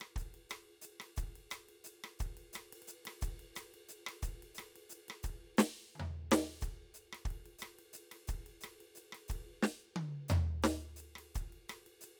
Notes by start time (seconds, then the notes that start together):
0.01 cross-stick, ride
0.16 kick, hi-hat pedal, ride
0.35 ride
0.50 cross-stick, hi-hat pedal, ride
0.82 hi-hat pedal, ride
1.01 cross-stick, ride
1.17 kick, hi-hat pedal, ride
1.36 ride
1.51 cross-stick, hi-hat pedal, ride
1.69 ride
1.85 hi-hat pedal, ride
2.04 cross-stick, ride
2.20 kick, hi-hat pedal, ride
2.38 ride
2.54 cross-stick, hi-hat pedal, ride
2.73 ride
2.83 ride
2.88 hi-hat pedal, ride
3.06 cross-stick, ride
3.22 kick, hi-hat pedal, ride
3.40 ride
3.56 cross-stick, hi-hat pedal, ride
3.75 ride
3.89 hi-hat pedal, ride
4.07 cross-stick, ride
4.23 kick, hi-hat pedal, ride
4.43 ride
4.55 cross-stick, hi-hat pedal
4.60 ride
4.76 ride
4.90 hi-hat pedal, ride
5.09 cross-stick, ride
5.24 kick, hi-hat pedal, ride
5.58 snare, hi-hat pedal
5.96 high tom
6.00 floor tom
6.32 snare, ride
6.62 kick, hi-hat pedal
6.66 ride
6.95 hi-hat pedal, ride
7.13 cross-stick, ride
7.26 kick, hi-hat pedal
7.31 ride
7.46 ride
7.59 cross-stick, hi-hat pedal
7.64 ride
7.79 ride
7.94 hi-hat pedal, ride
8.12 cross-stick, ride
8.28 kick, hi-hat pedal, ride
8.47 ride
8.61 cross-stick, hi-hat pedal, ride
8.81 ride
8.96 hi-hat pedal, ride
9.13 cross-stick, ride
9.29 kick, hi-hat pedal, ride
9.63 snare
9.97 high tom
10.29 floor tom, hi-hat pedal
10.63 snare, hi-hat pedal, ride
10.97 hi-hat pedal
11.01 ride
11.16 cross-stick, ride
11.35 kick, hi-hat pedal, ride
11.53 ride
11.69 cross-stick, hi-hat pedal, ride
11.87 ride
12.01 hi-hat pedal, ride